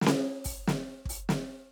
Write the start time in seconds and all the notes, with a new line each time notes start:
0.02 snare
0.07 snare
0.27 snare
0.44 open hi-hat, kick
0.63 hi-hat pedal
0.68 snare
0.90 snare
1.06 open hi-hat, kick
1.29 snare, hi-hat pedal